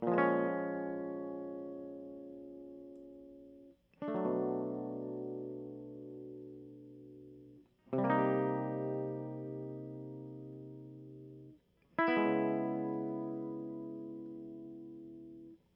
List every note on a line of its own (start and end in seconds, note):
0.03 3.76 A#2
0.08 3.74 F3
0.12 3.67 G#3
0.18 3.74 C#4
4.02 7.65 D4
4.08 7.59 A3
4.15 7.65 F#3
4.26 7.60 B2
4.32 4.80 F2
7.94 11.54 C3
7.99 11.57 G3
8.04 11.54 A#3
8.10 11.58 D#4
11.98 15.57 E4
12.08 15.54 B3
12.17 15.59 G#3
12.26 15.53 C#3